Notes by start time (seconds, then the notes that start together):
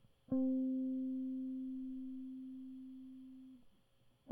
0.33 C4